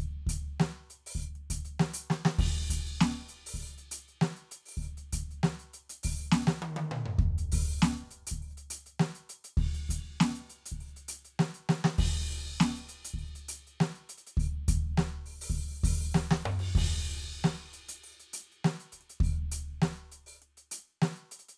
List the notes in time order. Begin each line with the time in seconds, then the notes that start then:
0.01 hi-hat pedal
0.12 closed hi-hat
0.27 closed hi-hat, kick
0.45 closed hi-hat
0.60 snare
0.91 closed hi-hat
1.07 open hi-hat
1.16 kick
1.22 kick, hi-hat pedal
1.36 closed hi-hat
1.51 closed hi-hat, kick
1.66 closed hi-hat
1.80 snare
1.94 open hi-hat
2.11 snare
2.26 snare
2.39 kick, crash
2.71 closed hi-hat, kick
2.87 closed hi-hat
3.01 snare
3.29 closed hi-hat
3.47 open hi-hat
3.55 kick
3.61 open hi-hat
3.70 hi-hat pedal
3.79 closed hi-hat
3.92 closed hi-hat
4.09 closed hi-hat
4.22 snare
4.37 closed hi-hat
4.52 closed hi-hat
4.66 open hi-hat
4.69 open hi-hat
4.78 kick
4.83 hi-hat pedal, open hi-hat
4.98 closed hi-hat
5.13 closed hi-hat, kick
5.31 closed hi-hat
5.44 snare
5.60 closed hi-hat
5.74 closed hi-hat
5.90 closed hi-hat
6.04 open hi-hat, kick
6.19 open hi-hat
6.32 snare
6.48 snare
6.63 high tom
6.77 high tom
6.92 mid tom
7.06 floor tom
7.19 kick
7.39 closed hi-hat
7.53 open hi-hat, kick
7.71 open hi-hat
7.83 snare
7.98 closed hi-hat
8.11 closed hi-hat
8.28 closed hi-hat
8.32 kick
8.43 open hi-hat
8.51 hi-hat pedal
8.58 closed hi-hat
8.71 closed hi-hat
8.87 closed hi-hat
9.00 snare
9.15 closed hi-hat
9.30 closed hi-hat
9.45 closed hi-hat
9.58 kick, hi-hat pedal, crash
9.75 closed hi-hat
9.90 closed hi-hat, kick
10.07 closed hi-hat
10.21 snare
10.36 closed hi-hat
10.50 closed hi-hat
10.66 closed hi-hat
10.72 kick
10.81 open hi-hat
10.90 hi-hat pedal
10.97 closed hi-hat
11.09 closed hi-hat
11.25 closed hi-hat
11.40 snare
11.55 closed hi-hat
11.70 snare
11.85 snare
11.99 kick, crash
12.17 open hi-hat
12.30 open hi-hat
12.47 open hi-hat
12.59 snare, hi-hat pedal
12.76 closed hi-hat
12.89 closed hi-hat
13.05 closed hi-hat
13.14 kick
13.19 open hi-hat
13.27 hi-hat pedal
13.36 closed hi-hat
13.49 closed hi-hat
13.68 closed hi-hat
13.81 snare
13.96 closed hi-hat
14.10 closed hi-hat
14.18 closed hi-hat
14.27 closed hi-hat
14.38 open hi-hat, kick
14.45 hi-hat pedal
14.69 open hi-hat, kick
14.98 snare
15.26 open hi-hat
15.42 open hi-hat
15.51 kick
15.58 open hi-hat
15.71 open hi-hat
15.84 open hi-hat, kick
16.01 open hi-hat
16.15 snare
16.32 snare
16.46 floor tom
16.60 crash
16.76 kick, crash
16.93 open hi-hat
17.10 open hi-hat
17.29 open hi-hat
17.45 snare
17.74 closed hi-hat
17.89 closed hi-hat
18.04 open hi-hat
18.14 hi-hat pedal
18.20 closed hi-hat
18.34 closed hi-hat
18.52 closed hi-hat
18.65 snare
18.80 closed hi-hat
18.93 closed hi-hat, kick
19.02 closed hi-hat
19.10 closed hi-hat
19.21 open hi-hat, kick
19.33 hi-hat pedal
19.52 closed hi-hat
19.82 snare
19.96 closed hi-hat
20.12 open hi-hat
20.27 open hi-hat
20.35 hi-hat pedal
20.43 closed hi-hat
20.58 closed hi-hat
20.72 closed hi-hat
20.90 closed hi-hat
21.03 snare
21.16 closed hi-hat
21.32 closed hi-hat
21.40 closed hi-hat
21.49 open hi-hat